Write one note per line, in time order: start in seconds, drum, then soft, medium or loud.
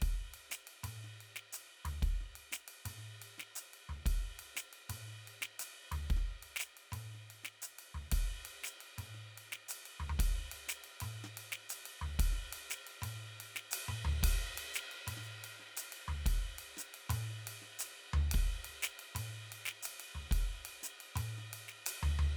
0.02 kick medium
0.02 ride medium
0.34 ride soft
0.50 snare soft
0.50 hi-hat pedal medium
0.67 ride soft
0.84 mid tom medium
0.84 ride medium
1.04 snare soft
1.21 ride soft
1.35 snare soft
1.53 hi-hat pedal medium
1.53 ride medium
1.85 floor tom medium
1.85 ride soft
2.03 kick medium
2.03 ride soft
2.21 snare soft
2.36 ride soft
2.52 snare soft
2.52 hi-hat pedal medium
2.68 ride medium
2.86 mid tom medium
2.86 ride medium
2.99 snare soft
3.22 ride soft
3.38 snare soft
3.56 hi-hat pedal medium
3.56 ride medium
3.74 ride soft
3.89 floor tom medium
4.06 kick medium
4.06 ride medium
4.22 snare soft
4.39 ride medium
4.56 snare soft
4.56 hi-hat pedal medium
4.73 ride soft
4.90 mid tom medium
4.90 ride medium
5.08 snare soft
5.28 ride soft
5.42 snare soft
5.60 hi-hat pedal medium
5.60 ride medium
5.92 floor tom medium
5.92 ride soft
6.10 kick medium
6.10 ride soft
6.17 snare soft
6.43 ride soft
6.56 snare soft
6.56 hi-hat pedal medium
6.60 snare soft
6.77 ride soft
6.92 mid tom medium
6.92 ride medium
7.15 snare soft
7.31 ride soft
7.44 snare soft
7.62 hi-hat pedal medium
7.62 ride soft
7.79 ride medium
7.95 floor tom medium
8.12 kick medium
8.12 ride medium
8.32 snare soft
8.45 ride medium
8.63 snare soft
8.63 hi-hat pedal medium
8.81 ride soft
8.98 mid tom medium
8.98 ride medium
9.15 snare soft
9.38 ride soft
9.52 snare soft
9.69 hi-hat pedal medium
9.69 ride medium
9.86 ride soft
10.00 floor tom medium
10.10 floor tom medium
10.19 kick medium
10.19 ride medium
10.40 snare soft
10.52 ride medium
10.68 snare soft
10.68 hi-hat pedal medium
10.84 ride soft
11.01 mid tom medium
11.01 ride medium
11.24 snare soft
11.38 ride medium
11.52 snare soft
11.63 snare soft
11.70 hi-hat pedal medium
11.70 ride medium
11.86 ride medium
12.02 floor tom medium
12.19 kick medium
12.19 ride medium
12.33 snare soft
12.53 ride medium
12.70 snare soft
12.70 hi-hat pedal medium
12.87 ride soft
13.02 mid tom medium
13.02 ride medium
13.26 snare soft
13.41 ride medium
13.56 snare soft
13.71 hi-hat pedal medium
13.71 ride loud
13.89 mid tom medium
14.05 floor tom medium
14.23 kick medium
14.23 snare soft
14.23 ride loud
14.58 ride medium
14.74 snare soft
14.74 hi-hat pedal medium
14.92 ride soft
15.07 mid tom medium
15.07 ride medium
15.17 snare soft
15.24 hi-hat pedal soft
15.44 ride medium
15.60 snare soft
15.77 hi-hat pedal medium
15.77 ride medium
15.93 ride medium
16.08 floor tom medium
16.26 kick medium
16.26 ride medium
16.34 snare soft
16.59 ride medium
16.77 snare soft
16.77 hi-hat pedal medium
16.94 ride soft
17.10 mid tom medium
17.10 ride medium
17.47 ride medium
17.62 snare soft
17.68 ride soft
17.79 hi-hat pedal medium
17.79 ride medium
18.14 floor tom loud
18.32 kick medium
18.32 ride medium
18.65 ride medium
18.83 snare soft
18.83 snare medium
18.83 hi-hat pedal medium
19.00 ride medium
19.15 mid tom medium
19.15 ride medium
19.30 snare soft
19.52 ride medium
19.66 snare soft
19.68 snare soft
19.83 hi-hat pedal medium
19.83 ride medium
20.00 ride medium
20.15 floor tom medium
20.32 kick medium
20.32 ride medium
20.40 snare soft
20.65 ride medium
20.82 snare soft
20.82 hi-hat pedal medium
21.01 ride soft
21.16 mid tom medium
21.16 ride medium
21.38 snare soft
21.53 ride medium
21.69 snare soft
21.86 hi-hat pedal medium
21.86 ride loud
22.03 floor tom loud
22.19 floor tom medium